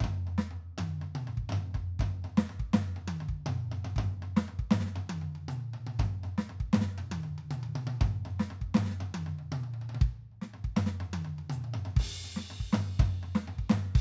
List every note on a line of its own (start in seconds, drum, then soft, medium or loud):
0.01 kick medium
0.01 floor tom loud
0.04 floor tom loud
0.27 floor tom medium
0.39 snare medium
0.51 floor tom medium
0.78 floor tom loud
0.78 high tom loud
1.02 floor tom medium
1.16 mid tom loud
1.28 floor tom medium
1.38 kick medium
1.50 floor tom loud
1.53 floor tom loud
1.75 kick medium
1.75 floor tom medium
2.00 kick medium
2.00 floor tom loud
2.25 floor tom medium
2.38 snare loud
2.50 floor tom medium
2.60 kick medium
2.74 snare loud
2.74 floor tom loud
2.97 floor tom medium
3.08 high tom loud
3.21 floor tom medium
3.29 kick medium
3.47 floor tom loud
3.47 mid tom loud
3.72 floor tom medium
3.85 floor tom medium
3.97 kick medium
3.97 floor tom loud
4.23 floor tom medium
4.37 snare loud
4.49 floor tom medium
4.59 kick medium
4.71 snare loud
4.71 floor tom loud
4.81 snare medium
4.86 snare soft
4.96 floor tom medium
5.10 high tom loud
5.22 floor tom medium
5.36 high tom medium
5.49 hi-hat pedal soft
5.49 mid tom loud
5.74 mid tom medium
5.87 mid tom medium
6.00 kick medium
6.00 floor tom loud
6.24 floor tom medium
6.24 hi-hat pedal soft
6.39 snare medium
6.50 floor tom medium
6.61 kick medium
6.74 snare loud
6.74 floor tom loud
6.82 snare medium
6.90 snare soft
6.98 floor tom medium
7.12 high tom loud
7.21 floor tom medium
7.21 hi-hat pedal soft
7.39 high tom medium
7.51 hi-hat pedal soft
7.51 mid tom loud
7.64 high tom medium
7.76 mid tom loud
7.88 mid tom loud
8.01 kick loud
8.01 floor tom loud
8.26 floor tom medium
8.40 snare medium
8.51 floor tom medium
8.62 kick medium
8.75 snare loud
8.75 floor tom loud
8.86 snare medium
8.90 snare medium
9.01 floor tom medium
9.15 high tom loud
9.27 floor tom medium
9.39 mid tom soft
9.52 hi-hat pedal soft
9.52 mid tom loud
9.64 mid tom medium
9.74 mid tom medium
9.82 mid tom medium
9.90 mid tom medium
9.95 mid tom medium
10.02 kick loud
10.32 floor tom soft
10.42 snare medium
10.54 floor tom medium
10.65 kick medium
10.77 snare loud
10.77 floor tom loud
10.87 snare medium
11.01 floor tom medium
11.01 hi-hat pedal soft
11.14 high tom loud
11.25 floor tom medium
11.39 high tom medium
11.50 hi-hat pedal medium
11.50 mid tom loud
11.65 mid tom medium
11.74 floor tom loud
11.86 floor tom medium
11.97 kick loud
11.97 ride loud
12.24 floor tom soft
12.37 snare medium
12.51 floor tom medium
12.61 kick medium
12.73 snare loud
12.73 floor tom loud
13.00 kick loud
13.00 snare soft
13.00 floor tom loud
13.23 floor tom medium
13.36 snare loud
13.48 floor tom medium
13.59 kick medium
13.70 snare loud
13.70 floor tom loud
13.96 kick loud
13.96 ride loud